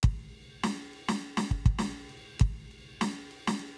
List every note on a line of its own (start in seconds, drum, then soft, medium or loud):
0.03 kick loud
0.03 ride loud
0.33 ride soft
0.64 snare loud
0.64 ride loud
0.93 ride medium
1.09 snare loud
1.22 ride medium
1.37 snare loud
1.51 kick medium
1.51 ride loud
1.66 kick loud
1.79 snare loud
1.79 ride loud
2.09 ride medium
2.40 kick loud
2.40 ride loud
2.71 ride medium
3.01 snare loud
3.01 ride loud
3.31 ride medium
3.48 snare loud
3.60 ride loud